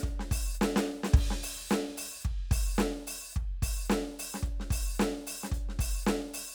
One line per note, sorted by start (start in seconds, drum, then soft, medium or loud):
0.01 kick medium
0.01 hi-hat pedal soft
0.07 closed hi-hat soft
0.20 snare medium
0.32 open hi-hat loud
0.32 kick medium
0.55 hi-hat pedal medium
0.62 snare loud
0.77 snare loud
1.04 snare loud
1.04 hi-hat pedal medium
1.14 kick loud
1.14 crash medium
1.31 snare medium
1.44 open hi-hat loud
1.70 snare loud
1.70 hi-hat pedal medium
1.98 open hi-hat loud
2.22 kick medium
2.22 hi-hat pedal medium
2.52 open hi-hat loud
2.52 kick medium
2.77 snare loud
2.77 hi-hat pedal medium
3.08 open hi-hat loud
3.33 kick medium
3.33 hi-hat pedal medium
3.63 open hi-hat loud
3.63 kick medium
3.86 hi-hat pedal medium
3.91 snare loud
4.20 open hi-hat loud
4.35 snare medium
4.35 hi-hat pedal soft
4.43 kick medium
4.43 closed hi-hat soft
4.61 snare medium
4.71 open hi-hat loud
4.71 kick medium
4.96 hi-hat pedal soft
5.00 snare loud
5.28 open hi-hat loud
5.44 snare medium
5.44 hi-hat pedal medium
5.52 closed hi-hat soft
5.52 kick medium
5.70 snare soft
5.80 open hi-hat loud
5.80 kick medium
6.03 hi-hat pedal medium
6.07 snare loud
6.35 open hi-hat loud